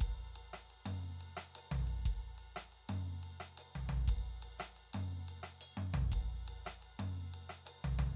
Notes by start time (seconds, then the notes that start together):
0.01 kick, ride
0.36 ride
0.53 cross-stick, hi-hat pedal
0.71 ride
0.86 mid tom, ride
1.21 ride
1.37 cross-stick
1.55 hi-hat pedal, ride
1.72 floor tom
1.87 ride
2.06 kick, ride
2.38 ride
2.56 cross-stick, hi-hat pedal
2.73 ride
2.89 mid tom, ride
3.23 ride
3.40 cross-stick
3.58 hi-hat pedal, ride
3.76 floor tom
3.89 floor tom
4.08 kick, ride
4.43 ride
4.59 cross-stick, hi-hat pedal
4.77 ride
4.94 mid tom, ride
5.29 ride
5.43 cross-stick
5.61 hi-hat pedal, ride bell
5.77 mid tom
5.94 floor tom
6.12 kick, ride
6.48 ride
6.66 cross-stick, hi-hat pedal
6.83 ride
6.99 mid tom, ride
7.34 ride
7.50 cross-stick
7.66 hi-hat pedal, ride
7.84 floor tom
7.99 floor tom